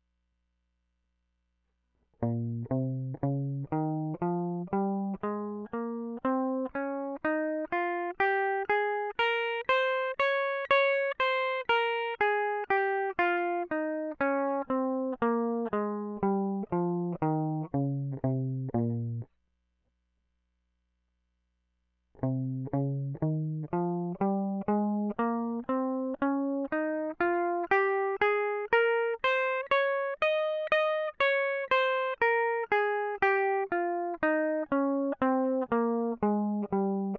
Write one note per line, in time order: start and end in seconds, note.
2.24 2.68 A#2
2.72 3.19 C3
3.24 3.68 C#3
3.73 4.18 D#3
4.23 4.70 F3
4.74 5.18 G3
5.24 5.69 G#3
5.74 6.21 A#3
6.25 6.70 C4
6.76 7.20 C#4
7.25 7.68 D#4
7.73 8.14 F4
8.21 8.66 G4
8.70 9.14 G#4
9.19 9.65 A#4
9.69 10.16 C5
10.20 10.68 C#5
10.71 11.14 C#5
11.20 11.64 C5
11.70 12.18 A#4
12.21 12.67 G#4
12.71 13.13 G4
13.19 13.67 F4
13.72 14.15 D#4
14.21 14.66 C#4
14.71 15.17 C4
15.23 15.70 A#3
15.74 16.21 G#3
16.24 16.67 G3
16.73 17.18 F3
17.23 17.68 D#3
17.75 18.20 C#3
18.25 18.74 C3
18.76 19.26 A#2
22.24 22.71 C3
22.75 23.18 C#3
23.23 23.69 D#3
23.74 24.18 F3
24.22 24.66 G3
24.69 25.15 G#3
25.20 25.64 A#3
25.70 26.18 C4
26.22 26.69 C#4
26.73 27.15 D#4
27.21 27.68 F4
27.72 28.18 G4
28.22 28.69 G#4
28.73 29.17 A#4
29.24 29.69 C5
29.72 30.17 C#5
30.22 30.71 D#5
30.72 31.13 D#5
31.21 31.68 C#5
31.72 32.16 C5
32.22 32.67 A#4
32.72 33.19 G#4
33.23 33.69 G4
33.72 34.18 F4
34.23 34.66 D#4
34.72 35.16 C#4
35.22 35.66 C4
35.73 36.17 A#3
36.25 36.67 G#3
36.73 37.18 G3